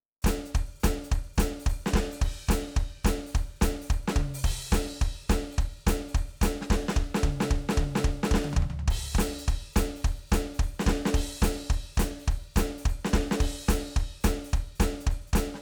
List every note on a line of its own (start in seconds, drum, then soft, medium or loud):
0.22 kick loud
0.22 snare loud
0.22 hi-hat pedal medium
0.26 closed hi-hat loud
0.46 closed hi-hat soft
0.54 open hi-hat medium
0.54 kick loud
0.80 closed hi-hat loud
0.80 snare loud
0.80 hi-hat pedal medium
0.84 kick loud
1.04 open hi-hat medium
1.12 open hi-hat medium
1.12 kick loud
1.35 closed hi-hat loud
1.35 kick loud
1.35 snare loud
1.35 hi-hat pedal medium
1.60 open hi-hat medium
1.66 open hi-hat medium
1.66 kick loud
1.86 snare loud
1.86 hi-hat pedal soft
1.93 kick loud
1.93 snare loud
2.11 open hi-hat medium
2.22 kick loud
2.22 crash medium
2.47 closed hi-hat loud
2.47 kick loud
2.47 snare loud
2.47 hi-hat pedal medium
2.76 open hi-hat soft
2.76 kick loud
3.04 closed hi-hat loud
3.04 kick loud
3.04 snare loud
3.04 hi-hat pedal soft
3.26 open hi-hat medium
3.35 open hi-hat medium
3.35 kick loud
3.60 closed hi-hat loud
3.60 kick loud
3.60 snare loud
3.60 hi-hat pedal soft
3.81 open hi-hat medium
3.87 kick loud
3.87 snare soft
3.91 open hi-hat medium
4.08 snare loud
4.08 hi-hat pedal soft
4.16 kick loud
4.16 high tom loud
4.34 open hi-hat loud
4.44 kick loud
4.44 crash loud
4.71 closed hi-hat loud
4.71 kick loud
4.71 snare loud
4.71 hi-hat pedal soft
4.93 open hi-hat soft
5.01 open hi-hat medium
5.01 kick loud
5.29 closed hi-hat medium
5.29 kick loud
5.29 snare loud
5.29 hi-hat pedal soft
5.51 open hi-hat medium
5.58 open hi-hat medium
5.58 kick loud
5.86 closed hi-hat loud
5.86 kick loud
5.86 snare loud
5.86 hi-hat pedal soft
6.08 open hi-hat medium
6.15 open hi-hat medium
6.15 kick loud
6.41 closed hi-hat loud
6.41 kick loud
6.41 snare loud
6.41 hi-hat pedal soft
6.61 snare medium
6.66 kick loud
6.66 hi-hat pedal soft
6.71 snare loud
6.88 snare loud
6.88 hi-hat pedal soft
6.96 kick loud
7.14 snare loud
7.21 kick loud
7.21 hi-hat pedal soft
7.25 high tom loud
7.40 snare loud
7.47 kick loud
7.47 hi-hat pedal soft
7.69 snare loud
7.74 kick loud
7.74 hi-hat pedal soft
7.79 high tom loud
7.95 snare loud
8.00 kick loud
8.00 hi-hat pedal soft
8.23 snare loud
8.23 hi-hat pedal soft
8.31 kick loud
8.31 snare loud
8.44 high tom loud
8.50 floor tom loud
8.50 hi-hat pedal soft
8.56 kick loud
8.62 floor tom medium
8.70 floor tom loud
8.79 kick soft
8.79 floor tom medium
8.88 kick loud
8.88 crash loud
9.13 kick loud
9.13 hi-hat pedal medium
9.18 closed hi-hat loud
9.18 snare loud
9.39 open hi-hat medium
9.48 open hi-hat medium
9.48 kick loud
9.73 kick loud
9.73 snare loud
9.73 hi-hat pedal soft
9.77 closed hi-hat loud
9.96 open hi-hat medium
10.04 open hi-hat medium
10.04 kick loud
10.29 kick loud
10.29 snare loud
10.29 hi-hat pedal soft
10.33 closed hi-hat loud
10.54 open hi-hat medium
10.59 open hi-hat medium
10.59 kick loud
10.79 snare loud
10.79 hi-hat pedal soft
10.86 kick loud
10.86 snare loud
11.05 snare loud
11.14 kick loud
11.14 crash loud
11.38 kick loud
11.38 hi-hat pedal soft
11.43 closed hi-hat loud
11.43 snare loud
11.70 open hi-hat medium
11.70 kick loud
11.95 kick loud
11.95 hi-hat pedal soft
11.99 closed hi-hat loud
11.99 snare loud
12.19 open hi-hat soft
12.28 open hi-hat medium
12.28 kick loud
12.54 closed hi-hat loud
12.54 kick loud
12.54 snare loud
12.54 hi-hat pedal soft
12.78 open hi-hat medium
12.85 open hi-hat medium
12.85 kick loud
13.05 snare loud
13.05 hi-hat pedal soft
13.13 kick loud
13.13 snare loud
13.31 snare loud
13.40 kick loud
13.40 crash loud
13.66 closed hi-hat loud
13.66 kick loud
13.66 snare loud
13.66 hi-hat pedal soft
13.96 open hi-hat soft
13.96 kick loud
14.21 closed hi-hat loud
14.21 kick loud
14.21 snare loud
14.21 hi-hat pedal soft
14.44 open hi-hat medium
14.53 open hi-hat medium
14.53 kick loud
14.75 hi-hat pedal soft
14.80 closed hi-hat loud
14.80 kick loud
14.80 snare loud
15.01 closed hi-hat medium
15.07 open hi-hat medium
15.07 kick loud
15.27 hi-hat pedal soft
15.33 closed hi-hat loud
15.33 kick loud
15.33 snare loud
15.54 snare medium